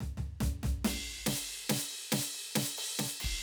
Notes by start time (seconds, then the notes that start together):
0.00 snare, floor tom
0.17 snare, floor tom
0.40 snare, floor tom
0.63 snare, floor tom
0.84 snare, ride
1.26 snare, crash
1.48 crash
1.69 snare, crash
1.90 crash
2.12 snare, crash
2.34 crash
2.55 snare, crash
2.77 crash
2.99 snare
3.20 kick, ride